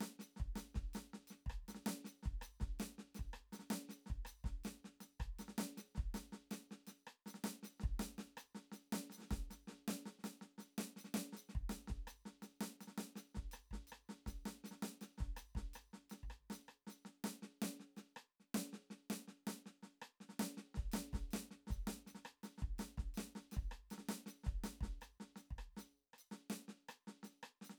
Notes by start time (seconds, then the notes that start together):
0.01 snare
0.19 snare, hi-hat pedal
0.37 kick, snare
0.56 snare, hi-hat pedal
0.75 kick, snare
0.94 snare, hi-hat pedal
1.14 snare
1.28 snare, hi-hat pedal
1.46 kick, cross-stick
1.68 snare, hi-hat pedal
1.75 snare
1.86 snare
2.05 snare, hi-hat pedal
2.23 kick, snare
2.42 cross-stick, hi-hat pedal
2.60 kick, snare
2.79 snare, hi-hat pedal
2.99 snare
3.15 snare, hi-hat pedal
3.19 kick
3.34 cross-stick
3.53 snare, hi-hat pedal
3.59 snare
3.71 snare
3.89 snare, hi-hat pedal
4.06 kick, snare
4.25 cross-stick, hi-hat pedal
4.44 kick, snare
4.64 snare, hi-hat pedal
4.85 snare
5.01 snare, hi-hat pedal
5.20 kick, cross-stick
5.39 snare, hi-hat pedal
5.48 snare
5.58 snare
5.78 snare, hi-hat pedal
5.95 kick, snare
5.98 snare
6.15 snare, hi-hat pedal
6.33 snare
6.51 snare, hi-hat pedal
6.71 snare
6.87 snare, hi-hat pedal
7.07 cross-stick
7.26 snare, hi-hat pedal
7.35 snare
7.44 snare
7.63 snare, hi-hat pedal
7.80 kick, snare
8.00 snare, hi-hat pedal
8.18 snare
8.37 cross-stick, hi-hat pedal
8.55 snare
8.72 snare, hi-hat pedal
8.93 snare
9.10 snare, hi-hat pedal
9.15 snare
9.18 snare
9.21 snare
9.31 kick, snare
9.51 snare, hi-hat pedal
9.68 snare
9.69 snare
9.88 snare, hi-hat pedal
10.06 snare
10.19 snare
10.24 snare, hi-hat pedal
10.42 snare
10.58 snare, hi-hat pedal
10.78 snare
10.97 snare, hi-hat pedal
11.05 snare
11.14 snare
11.33 snare
11.37 hi-hat pedal
11.49 snare
11.55 kick
11.70 snare, hi-hat pedal
11.88 kick, snare
12.07 cross-stick, hi-hat pedal
12.26 snare
12.42 snare, hi-hat pedal
12.61 snare
12.81 snare, hi-hat pedal
12.88 snare
12.98 snare
13.16 snare, hi-hat pedal
13.35 kick, snare
13.52 cross-stick, hi-hat pedal
13.71 kick, snare
13.87 hi-hat pedal
13.92 cross-stick
14.09 snare
14.27 kick, snare, hi-hat pedal
14.46 snare
14.64 snare, hi-hat pedal
14.71 snare
14.83 snare
15.01 snare, hi-hat pedal
15.18 kick, snare
15.21 snare
15.37 cross-stick, hi-hat pedal
15.55 kick, snare
15.74 cross-stick, hi-hat pedal
15.94 snare
16.10 snare, hi-hat pedal
16.23 kick
16.30 cross-stick
16.50 snare, hi-hat pedal
16.69 cross-stick
16.87 snare, hi-hat pedal
17.05 snare
17.24 snare
17.43 snare
17.62 snare
17.80 snare
17.97 snare, hi-hat pedal
18.17 cross-stick
18.40 snare
18.55 snare
18.73 snare
18.91 snare
19.10 snare
19.28 snare
19.47 snare
19.66 snare
19.83 snare
20.02 cross-stick
20.21 snare
20.29 snare
20.40 snare
20.57 snare
20.75 snare
20.77 kick, snare
20.92 snare, hi-hat pedal
21.13 kick, snare
21.31 snare, hi-hat pedal
21.51 snare
21.67 snare
21.69 kick, snare, hi-hat pedal
21.87 snare
22.07 snare, hi-hat pedal
22.15 snare
22.25 cross-stick
22.44 snare, hi-hat pedal
22.58 snare
22.62 kick
22.79 snare, hi-hat pedal
22.98 kick, snare
23.14 snare, hi-hat pedal
23.36 snare
23.52 snare, hi-hat pedal
23.57 kick
23.72 cross-stick
23.91 snare, hi-hat pedal
23.98 snare
24.09 snare
24.26 snare, hi-hat pedal
24.44 snare
24.46 kick, snare
24.64 snare, hi-hat pedal
24.81 kick, snare
25.02 cross-stick, hi-hat pedal
25.20 snare
25.36 snare, hi-hat pedal
25.51 kick
25.59 cross-stick
25.77 snare, hi-hat pedal
26.14 cross-stick
26.19 hi-hat pedal
26.32 snare
26.50 snare, hi-hat pedal
26.68 snare
26.89 cross-stick, hi-hat pedal
27.08 snare
27.23 snare, hi-hat pedal
27.43 cross-stick
27.62 snare, hi-hat pedal
27.70 snare